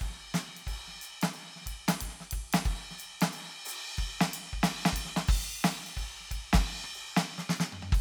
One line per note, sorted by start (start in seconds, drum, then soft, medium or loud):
0.01 kick medium
0.01 ride medium
0.34 snare loud
0.34 hi-hat pedal medium
0.34 ride medium
0.57 ride medium
0.67 kick medium
0.67 ride loud
0.88 snare soft
0.95 snare soft
1.02 hi-hat pedal medium
1.02 ride medium
1.22 snare loud
1.22 ride medium
1.34 ride medium
1.56 snare soft
1.61 snare soft
1.66 kick medium
1.66 hi-hat pedal soft
1.66 ride medium
1.88 snare loud
1.88 ride loud
2.01 kick medium
2.01 ride loud
2.09 snare soft
2.20 snare medium
2.31 kick medium
2.31 ride loud
2.53 snare loud
2.53 ride loud
2.65 kick medium
2.65 ride loud
2.91 snare soft
2.94 snare soft
2.98 hi-hat pedal medium
2.98 ride medium
3.21 snare loud
3.21 ride medium
3.33 ride loud
3.65 open hi-hat medium
3.65 hi-hat pedal loud
3.65 ride loud
3.97 kick medium
3.97 ride medium
4.21 snare loud
4.27 hi-hat pedal soft
4.33 ride bell loud
4.53 kick medium
4.63 snare loud
4.63 ride loud
4.85 snare loud
4.93 kick medium
4.93 ride loud
5.05 snare medium
5.17 snare loud
5.28 kick loud
5.28 crash loud
5.63 snare loud
5.63 hi-hat pedal medium
5.63 ride medium
5.87 ride medium
5.97 kick medium
5.97 ride medium
6.20 snare soft
6.25 cross-stick soft
6.31 kick medium
6.31 hi-hat pedal soft
6.31 ride medium
6.53 kick loud
6.53 snare loud
6.53 ride loud
6.84 cross-stick medium
6.95 hi-hat pedal soft
6.95 ride medium
7.17 snare loud
7.38 snare medium
7.49 snare loud
7.56 hi-hat pedal medium
7.60 snare loud
7.73 high tom medium
7.83 high tom medium
7.92 kick loud
7.92 crash medium